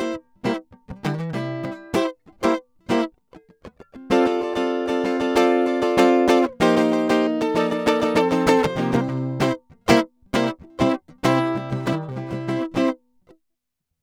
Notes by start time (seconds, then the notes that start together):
0.00 A#3 E4 F#4 C5
0.45 B2 G3 A#3 E4 G4 C5
0.73 C3
0.90 C3 G3
1.06 D3 G3 E4
1.16 E3
1.35 C3 G3 A#3 E4
1.65 C3 G3
1.95 C3 G3 A3 E4 G4 C5
2.44 G3 A#3 E4 G4 C5
2.90 G3 A#3 E4 G4 C5
4.12 G3 C4 F4 A4 D5
4.25 C4 F4 A4 D5
4.42 C4 F4 A4 D5
4.57 G3 C4 F4 A4 D5
4.88 C4 F4 A4 D5
5.05 G3 C4 F4 A4 D5
5.21 G3 C4 F4 A4 D5
5.37 G3 C4 F4 A4 D5
5.67 F4 A4 D5
5.83 C4 F4 A4 D5
5.99 G3 C4 F4 A4 D5
6.29 C4 F4 A4 D5
6.61 F3 A#3 D#4 G4 C5
6.79 A#3 D#4 G4 C5
6.93 G4 C5
7.11 A#3 D#4 G4 C5
7.42 A#3 D#4 A4
7.56 F3 A#3 D#4 A4 D5
7.71 A#3 D#4 A4 D5
7.87 A#3 D#4 A4 D5
8.02 F3 A#3 D#4 A4 D5
8.16 F3 C4 D#4 A4
8.33 F3 C4 D#4 A4
8.48 C4 D#4 A4 C5
8.65 C3 F3 C5
8.77 C3 F3 A#3 D#4 G4 C5
8.94 C3 G3 A#3 E4 G4 C5
9.03 C4
9.41 C3 G3 C4 E4 G4 C5
9.89 C3 G3 A#3 E4 G4 C5
10.35 C3 G3 A#3 E4 G4 C5
10.80 C3 G3 C4 E4 F#4 C5
11.25 C3 G3 C4 E4 G4 C5
11.56 C3 G3 E4
11.71 C3 G3 E4
11.88 C3 G3 E4
11.95 D#3
12.10 C3
12.18 G3 A#3 E4
12.30 C3 G3 C4 E4 C5
12.39 C5
12.49 C3 G3 C4 E4 C5
12.75 C3 G3 C4 E4 C5